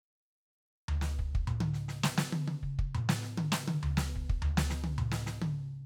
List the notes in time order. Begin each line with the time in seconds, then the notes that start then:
0.88 floor tom
1.01 snare
1.19 kick
1.35 kick
1.47 mid tom
1.60 high tom
1.74 snare
1.88 snare
2.03 snare
2.18 snare
2.32 high tom
2.48 high tom
2.63 kick
2.79 kick
2.95 mid tom
3.09 snare
3.22 snare
3.37 high tom
3.52 snare
3.68 high tom
3.83 floor tom
3.97 snare
4.15 kick
4.29 kick
4.42 floor tom
4.57 snare
4.70 snare
4.84 high tom
4.98 mid tom
5.12 snare
5.26 snare
5.42 high tom